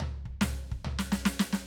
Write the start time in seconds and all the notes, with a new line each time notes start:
0.00 floor tom
0.25 kick
0.41 snare, floor tom
0.71 kick
0.84 floor tom
0.99 snare
1.12 snare
1.25 snare
1.39 snare
1.53 snare